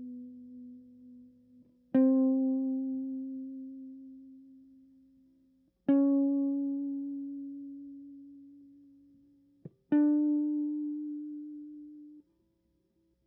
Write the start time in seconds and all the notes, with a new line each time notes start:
1.94 C4
5.90 C#4
9.94 D4